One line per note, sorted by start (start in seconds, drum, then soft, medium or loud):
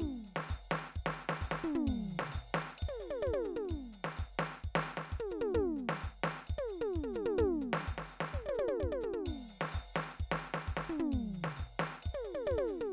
0.01 kick soft
0.01 ride bell medium
0.25 hi-hat pedal medium
0.25 ride soft
0.37 snare medium
0.50 kick soft
0.50 ride bell medium
0.71 snare medium
0.71 hi-hat pedal medium
0.91 hi-hat pedal soft
0.96 kick soft
0.96 ride bell soft
1.07 snare medium
1.16 hi-hat pedal medium
1.16 ride soft
1.30 snare medium
1.42 kick soft
1.42 ride medium
1.52 snare medium
1.62 floor tom medium
1.62 hi-hat pedal medium
1.75 floor tom medium
1.88 kick soft
1.88 ride medium
1.94 kick soft
2.09 hi-hat pedal medium
2.09 ride soft
2.20 snare medium
2.30 hi-hat pedal soft
2.30 ride medium
2.35 kick soft
2.55 snare medium
2.55 hi-hat pedal medium
2.77 hi-hat pedal soft
2.77 ride medium
2.83 kick soft
2.89 kick soft
2.89 high tom medium
2.91 kick soft
3.00 hi-hat pedal loud
3.00 high tom soft
3.11 high tom medium
3.22 hi-hat pedal soft
3.22 high tom loud
3.28 kick soft
3.34 high tom loud
3.45 hi-hat pedal loud
3.45 mid tom medium
3.56 mid tom medium
3.65 mid tom soft
3.70 kick soft
3.70 ride bell medium
3.93 hi-hat pedal loud
3.93 ride soft
4.05 snare medium
4.15 hi-hat pedal soft
4.15 ride bell medium
4.20 kick soft
4.39 snare medium
4.39 hi-hat pedal medium
4.64 kick soft
4.64 ride bell soft
4.76 snare loud
4.85 hi-hat pedal medium
4.85 ride soft
4.98 snare medium
5.10 kick soft
5.10 ride bell soft
5.20 mid tom medium
5.31 hi-hat pedal medium
5.31 mid tom medium
5.41 mid tom loud
5.55 kick soft
5.55 mid tom loud
5.64 kick soft
5.76 hi-hat pedal medium
5.76 mid tom soft
5.90 snare medium
6.00 hi-hat pedal soft
6.00 ride bell medium
6.04 kick soft
6.24 snare medium
6.24 hi-hat pedal loud
6.48 kick soft
6.48 ride medium
6.58 kick soft
6.58 high tom medium
6.69 hi-hat pedal medium
6.69 ride soft
6.82 mid tom loud
6.90 hi-hat pedal soft
6.94 kick soft
6.94 ride soft
7.04 mid tom medium
7.14 hi-hat pedal loud
7.14 mid tom medium
7.26 mid tom loud
7.38 kick soft
7.38 mid tom loud
7.62 hi-hat pedal loud
7.62 mid tom soft
7.74 snare medium
7.84 hi-hat pedal soft
7.84 ride bell medium
7.88 kick soft
7.99 snare medium
8.09 hi-hat pedal loud
8.09 ride bell soft
8.21 snare medium
8.30 hi-hat pedal soft
8.30 high tom medium
8.35 kick soft
8.42 kick soft
8.46 high tom medium
8.49 high tom medium
8.55 hi-hat pedal medium
8.59 high tom loud
8.69 high tom medium
8.80 kick soft
8.80 high tom medium
8.90 kick soft
8.90 high tom medium
9.01 hi-hat pedal loud
9.01 mid tom medium
9.14 mid tom medium
9.26 kick soft
9.26 ride loud
9.50 hi-hat pedal medium
9.50 ride soft
9.62 snare medium
9.70 hi-hat pedal soft
9.70 ride medium
9.75 kick soft
9.94 snare medium
9.94 hi-hat pedal medium
10.20 kick soft
10.20 ride bell soft
10.32 snare medium
10.41 hi-hat pedal medium
10.41 ride soft
10.55 snare medium
10.68 kick soft
10.68 ride soft
10.77 snare medium
10.87 floor tom medium
10.87 hi-hat pedal medium
11.00 floor tom medium
11.13 kick soft
11.13 ride medium
11.22 kick soft
11.34 hi-hat pedal loud
11.34 ride soft
11.45 snare medium
11.55 hi-hat pedal soft
11.55 ride medium
11.60 kick soft
11.79 snare medium
11.79 hi-hat pedal loud
12.00 hi-hat pedal soft
12.00 ride medium
12.06 kick soft
12.14 kick soft
12.14 high tom medium
12.25 hi-hat pedal loud
12.25 high tom soft
12.35 high tom medium
12.45 hi-hat pedal soft
12.45 high tom loud
12.45 crash soft
12.52 kick soft
12.58 high tom loud
12.68 hi-hat pedal loud
12.68 high tom soft
12.81 mid tom medium